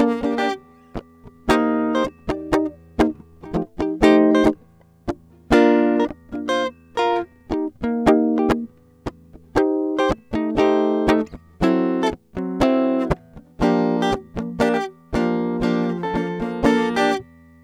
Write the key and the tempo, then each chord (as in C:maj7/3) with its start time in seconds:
G minor, 119 BPM
0.00 G:min(9,*1)/b3
1.51 C:min7/b7
3.52 F:9
5.54 A#:maj
7.56 D#:maj/5
9.57 A:hdim7
11.59 D:9(*1)/3
13.61 G:min7/b7